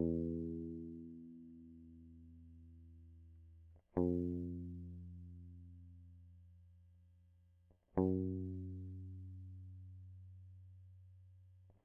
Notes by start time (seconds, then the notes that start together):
0.00 E2
3.99 F2
8.00 F#2